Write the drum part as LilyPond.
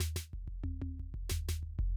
\new DrumStaff \drummode { \time 4/4 \tempo 4 = 122 \tuplet 3/2 { <tomfh sn>8 <sn tomfh>8 bd8 bd8 <tommh tomfh>8 <tommh tomfh>8 bd8 bd8 <sn tomfh>8 <sn tomfh>8 bd8 bd8 } | }